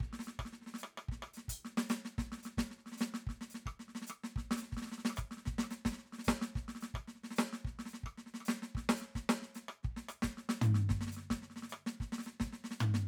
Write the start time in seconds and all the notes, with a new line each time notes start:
0.01 kick, snare
0.07 kick
0.13 snare
0.20 snare, hi-hat pedal
0.28 snare
0.40 kick, cross-stick
0.46 snare
0.53 snare
0.62 snare
0.67 snare
0.75 snare
0.79 hi-hat pedal
0.84 cross-stick
0.98 cross-stick
1.09 kick, snare
1.15 kick
1.23 cross-stick
1.28 cross-stick
1.34 snare, hi-hat pedal
1.49 closed hi-hat, kick
1.65 snare
1.78 snare
1.90 snare, hi-hat pedal
2.05 snare
2.19 kick, snare
2.32 snare
2.38 snare
2.44 snare, hi-hat pedal
2.58 kick, snare
2.71 snare
2.79 snare
2.86 snare
2.92 snare
2.97 snare, hi-hat pedal
3.01 snare
3.14 snare
3.27 kick, snare
3.35 kick
3.42 snare
3.51 hi-hat pedal
3.55 snare
3.66 kick, cross-stick
3.80 snare
3.89 snare
3.96 snare
4.02 snare
4.07 cross-stick, hi-hat pedal
4.24 snare
4.36 kick, snare
4.43 kick
4.51 snare
4.57 snare, hi-hat pedal
4.63 snare
4.72 kick, snare
4.77 snare
4.82 snare
4.87 snare
4.92 snare
4.99 snare
5.05 snare
5.10 cross-stick
5.17 kick, cross-stick, hi-hat pedal
5.25 kick
5.32 snare
5.38 snare
5.46 kick, snare
5.55 kick
5.59 snare
5.64 cross-stick
5.71 snare, hi-hat pedal
5.86 kick, snare
5.93 snare
5.98 snare
6.06 snare
6.12 snare
6.19 snare
6.25 kick, snare, hi-hat pedal
6.34 kick
6.42 snare
6.56 kick, snare
6.62 kick
6.69 snare
6.76 snare
6.81 snare, hi-hat pedal
6.95 kick, cross-stick
7.00 kick
7.08 snare
7.16 snare
7.22 snare
7.24 snare
7.31 snare
7.37 snare, hi-hat pedal
7.53 snare
7.65 kick, snare
7.71 kick
7.79 snare
7.86 snare, hi-hat pedal
7.94 snare
8.04 kick, cross-stick
8.18 snare
8.27 snare
8.34 snare
8.41 cross-stick
8.46 snare, hi-hat pedal
8.63 snare
8.75 kick, snare
8.81 kick
8.90 snare
8.97 hi-hat pedal
9.02 snare
9.16 kick, snare
9.30 snare
9.43 snare
9.55 snare, hi-hat pedal
9.69 cross-stick
9.84 kick, snare
9.92 kick
9.97 snare
10.09 cross-stick, hi-hat pedal
10.23 kick, snare
10.38 snare
10.50 snare
10.62 floor tom, hi-hat pedal
10.75 snare
10.90 kick, snare
10.97 kick
11.01 snare
11.07 snare
11.13 snare, hi-hat pedal
11.17 snare
11.31 kick, snare
11.43 snare
11.51 snare
11.57 snare
11.63 snare
11.70 cross-stick, hi-hat pedal
11.87 snare
12.01 kick, snare
12.07 kick
12.13 snare
12.19 snare
12.23 snare, hi-hat pedal
12.40 kick, snare
12.47 kick
12.53 snare
12.65 snare
12.71 snare
12.80 hi-hat pedal, floor tom
12.95 snare